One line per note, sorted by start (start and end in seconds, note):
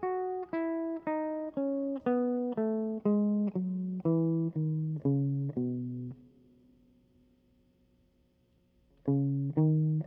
0.03 0.47 F#4
0.53 1.01 E4
1.07 1.51 D#4
1.57 2.01 C#4
2.07 2.56 B3
2.58 3.01 A3
3.06 3.52 G#3
3.56 4.04 F#3
4.06 4.52 E3
4.57 5.01 D#3
5.06 5.53 C#3
5.58 6.14 B2
9.08 9.54 C#3
9.58 10.05 D#3